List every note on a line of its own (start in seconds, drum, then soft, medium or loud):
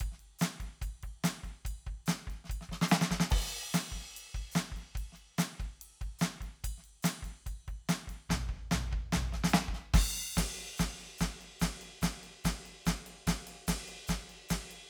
0.01 kick medium
0.01 ride bell soft
0.13 snare soft
0.20 ride soft
0.40 snare loud
0.40 hi-hat pedal medium
0.40 ride bell medium
0.61 kick soft
0.61 ride soft
0.82 kick medium
0.82 ride bell soft
1.04 kick soft
1.04 ride soft
1.24 snare loud
1.24 hi-hat pedal medium
1.24 ride bell medium
1.44 kick soft
1.44 ride soft
1.66 kick medium
1.66 ride bell medium
1.87 kick medium
1.87 ride soft
2.07 snare loud
2.07 hi-hat pedal medium
2.07 ride bell soft
2.28 kick soft
2.28 ride soft
2.45 snare soft
2.50 kick medium
2.50 ride bell soft
2.62 snare soft
2.70 kick soft
2.70 snare medium
2.82 snare loud
2.88 snare loud
2.88 hi-hat pedal medium
3.02 snare loud
3.11 kick soft
3.11 snare loud
3.21 snare loud
3.31 kick loud
3.31 crash loud
3.74 snare loud
3.74 hi-hat pedal medium
3.74 ride bell medium
3.92 kick soft
4.17 ride bell medium
4.35 kick medium
4.35 ride soft
4.52 snare loud
4.52 hi-hat pedal medium
4.58 ride bell soft
4.72 kick soft
4.77 ride soft
4.96 kick medium
4.96 ride medium
5.13 snare soft
5.13 ride soft
5.39 snare loud
5.39 hi-hat pedal medium
5.39 ride bell medium
5.60 kick medium
5.60 ride soft
5.82 ride medium
6.02 kick medium
6.02 ride soft
6.19 snare loud
6.19 hi-hat pedal medium
6.19 ride bell soft
6.41 kick soft
6.41 ride soft
6.65 kick medium
6.65 ride bell medium
6.78 snare soft
6.85 ride soft
7.03 snare loud
7.03 hi-hat pedal medium
7.03 ride bell medium
7.23 kick soft
7.23 ride soft
7.47 kick medium
7.47 ride bell soft
7.69 kick medium
7.69 ride soft
7.90 snare loud
7.90 ride bell medium
8.08 kick soft
8.08 ride soft
8.30 kick soft
8.30 snare loud
8.30 floor tom loud
8.50 kick medium
8.72 snare loud
8.72 floor tom loud
8.92 kick medium
8.92 floor tom soft
9.13 snare loud
9.13 floor tom loud
9.18 kick soft
9.33 kick soft
9.33 snare medium
9.44 snare loud
9.49 hi-hat pedal medium
9.54 snare loud
9.69 kick medium
9.74 snare soft
9.94 kick loud
9.94 snare loud
9.94 crash loud
10.36 kick medium
10.36 snare loud
10.36 hi-hat pedal medium
10.36 crash loud
10.78 kick medium
10.78 snare loud
10.78 hi-hat pedal medium
10.78 crash medium
11.01 crash soft
11.19 kick medium
11.19 snare loud
11.19 hi-hat pedal medium
11.19 crash medium
11.42 crash soft
11.60 kick medium
11.60 snare loud
11.60 hi-hat pedal medium
11.60 crash medium
11.82 crash soft
12.02 kick soft
12.02 snare loud
12.02 hi-hat pedal medium
12.02 crash medium
12.24 crash soft
12.45 kick medium
12.45 snare loud
12.45 hi-hat pedal medium
12.45 crash medium
12.66 crash soft
12.86 kick medium
12.86 snare loud
12.86 hi-hat pedal medium
12.86 crash medium
13.07 crash medium
13.28 kick medium
13.28 snare loud
13.28 hi-hat pedal medium
13.28 crash medium
13.48 crash medium
13.68 kick medium
13.68 snare loud
13.68 hi-hat pedal medium
13.68 crash loud
13.89 crash soft
14.08 kick medium
14.08 snare loud
14.08 hi-hat pedal medium
14.08 crash medium
14.30 crash soft
14.50 kick soft
14.50 snare loud
14.50 hi-hat pedal medium
14.50 crash loud
14.72 crash medium